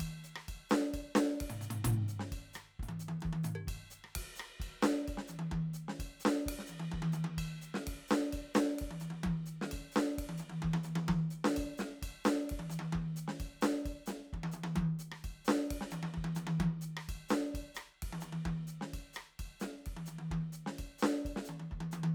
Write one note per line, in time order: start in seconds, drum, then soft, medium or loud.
0.01 kick soft
0.01 ride bell loud
0.25 hi-hat pedal medium
0.36 cross-stick medium
0.49 kick soft
0.49 ride bell medium
0.70 snare loud
0.70 hi-hat pedal medium
0.80 snare soft
0.94 kick soft
0.94 ride bell medium
1.16 snare loud
1.16 hi-hat pedal medium
1.41 kick soft
1.41 ride medium
1.47 kick soft
1.47 mid tom medium
1.62 hi-hat pedal medium
1.62 mid tom medium
1.71 mid tom medium
1.85 kick soft
1.85 mid tom loud
1.95 percussion soft
2.09 hi-hat pedal medium
2.20 snare medium
2.32 kick soft
2.32 ride bell medium
2.54 cross-stick medium
2.54 hi-hat pedal medium
2.80 kick soft
2.80 mid tom medium
2.89 high tom medium
3.00 hi-hat pedal medium
3.09 high tom medium
3.21 high tom medium
3.21 crash soft
3.25 kick soft
3.33 high tom medium
3.44 hi-hat pedal medium
3.44 mid tom medium
3.56 percussion medium
3.68 kick soft
3.68 ride bell medium
3.91 hi-hat pedal medium
4.05 cross-stick medium
4.16 kick soft
4.16 ride loud
4.22 kick soft
4.36 cross-stick medium
4.36 hi-hat pedal medium
4.60 kick soft
4.60 ride bell medium
4.83 snare loud
4.83 hi-hat pedal medium
5.08 kick soft
5.08 ride bell medium
5.18 snare medium
5.28 hi-hat pedal medium
5.28 high tom medium
5.40 high tom medium
5.52 kick soft
5.52 high tom loud
5.74 hi-hat pedal medium
5.89 snare medium
6.00 kick soft
6.00 ride bell medium
6.07 kick soft
6.20 hi-hat pedal medium
6.26 snare loud
6.47 kick soft
6.47 ride loud
6.59 snare medium
6.67 hi-hat pedal medium
6.67 high tom medium
6.80 high tom medium
6.92 kick soft
6.92 high tom medium
7.00 kick soft
7.00 high tom loud
7.13 hi-hat pedal medium
7.13 high tom medium
7.25 high tom medium
7.38 kick soft
7.38 ride bell loud
7.61 hi-hat pedal medium
7.61 ride soft
7.75 snare medium
7.87 kick soft
7.87 ride loud
8.09 snare loud
8.09 hi-hat pedal medium
8.33 kick soft
8.33 ride bell medium
8.41 kick soft
8.55 snare loud
8.55 hi-hat pedal medium
8.79 kick soft
8.79 ride medium
8.91 high tom medium
9.00 hi-hat pedal medium
9.00 high tom medium
9.11 high tom medium
9.24 kick soft
9.24 high tom loud
9.46 hi-hat pedal medium
9.62 snare medium
9.72 kick soft
9.72 ride bell medium
9.92 hi-hat pedal medium
9.97 snare medium
10.19 kick soft
10.19 ride medium
10.24 kick soft
10.30 high tom medium
10.38 hi-hat pedal medium
10.38 high tom medium
10.50 high tom medium
10.63 kick soft
10.63 high tom loud
10.74 high tom medium
10.84 hi-hat pedal medium
10.84 high tom medium
10.96 high tom loud
11.09 kick soft
11.09 high tom loud
11.31 hi-hat pedal medium
11.45 snare medium
11.57 kick soft
11.57 ride bell medium
11.78 snare medium
11.78 hi-hat pedal medium
12.03 kick soft
12.03 ride bell medium
12.25 snare loud
12.25 hi-hat pedal medium
12.50 kick soft
12.50 ride medium
12.60 high tom medium
12.70 hi-hat pedal medium
12.70 high tom medium
12.80 high tom medium
12.93 kick soft
12.93 high tom loud
13.17 hi-hat pedal medium
13.28 snare medium
13.40 kick soft
13.40 ride bell medium
13.62 snare medium
13.62 hi-hat pedal medium
13.86 kick soft
13.86 ride bell medium
14.07 snare medium
14.07 hi-hat pedal medium
14.33 kick soft
14.33 high tom medium
14.44 high tom medium
14.52 hi-hat pedal medium
14.52 high tom medium
14.64 high tom medium
14.76 kick soft
14.76 high tom loud
15.00 hi-hat pedal medium
15.12 cross-stick medium
15.25 kick soft
15.25 ride bell medium
15.31 kick soft
15.45 snare loud
15.45 hi-hat pedal medium
15.66 hi-hat pedal soft
15.71 kick soft
15.71 ride medium
15.82 snare medium
15.91 hi-hat pedal medium
15.91 high tom medium
16.03 high tom medium
16.14 kick soft
16.14 high tom medium
16.25 high tom medium
16.36 hi-hat pedal medium
16.36 high tom medium
16.47 high tom medium
16.60 kick soft
16.60 high tom loud
16.82 hi-hat pedal medium
16.97 cross-stick medium
17.09 kick soft
17.09 ride bell medium
17.29 snare medium
17.29 hi-hat pedal medium
17.55 kick soft
17.55 ride bell medium
17.62 kick soft
17.75 cross-stick medium
17.75 hi-hat pedal medium
18.03 kick soft
18.03 ride medium
18.13 high tom medium
18.21 hi-hat pedal medium
18.21 high tom medium
18.33 high tom medium
18.46 kick soft
18.46 high tom loud
18.68 hi-hat pedal medium
18.82 snare medium
18.94 kick soft
18.94 ride bell medium
19.14 cross-stick medium
19.14 hi-hat pedal medium
19.40 kick soft
19.40 ride bell medium
19.60 snare medium
19.60 hi-hat pedal medium
19.87 kick soft
19.87 ride medium
19.97 high tom medium
20.06 hi-hat pedal medium
20.06 high tom medium
20.19 high tom medium
20.31 kick soft
20.31 high tom medium
20.53 hi-hat pedal medium
20.67 snare medium
20.79 kick soft
20.79 ride bell medium
20.99 hi-hat pedal medium
21.03 snare loud
21.26 kick soft
21.26 ride bell medium
21.37 snare medium
21.45 hi-hat pedal medium
21.50 high tom soft
21.60 high tom medium
21.72 kick soft
21.72 high tom soft
21.81 high tom medium
21.92 hi-hat pedal medium
21.92 high tom medium
22.04 high tom loud